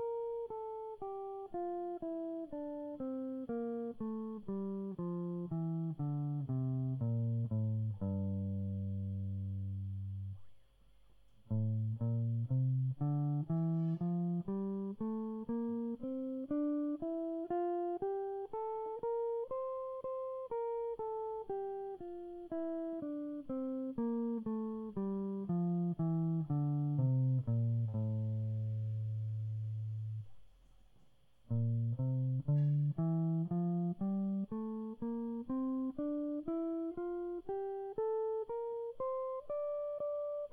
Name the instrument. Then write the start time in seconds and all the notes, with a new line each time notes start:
electric guitar
0.00 A#4
0.51 A4
1.02 G4
1.55 F4
2.03 E4
2.53 D4
3.01 C4
3.50 A#3
4.01 A3
4.49 G3
5.00 F3
5.53 E3
6.01 D3
6.50 C3
7.03 A#2
7.54 A2
8.04 G2
11.53 A2
12.03 A#2
12.53 C3
13.02 D3
13.51 E3
14.02 F3
14.49 G3
15.01 A3
15.50 A#3
16.04 C4
16.51 D4
17.03 E4
17.51 F4
18.03 G4
18.54 A4
19.04 A#4
19.51 C5
20.05 C5
20.52 A#4
21.00 A4
21.50 G4
22.52 E4
23.03 D4
23.50 C4
23.99 A#3
24.47 A3
24.98 G3
25.50 F3
26.00 E3
26.51 D3
27.00 C3
27.50 A#2
27.86 A2
27.96 A2
31.53 A#2
32.01 C3
32.50 D3
33.00 E3
33.52 F3
34.02 G3
34.52 A3
35.03 A#3
35.50 C4
35.99 D4
36.48 E4
36.98 F4
37.49 G4
37.98 A4
38.50 A#4
39.00 C5
39.50 D5
40.01 D5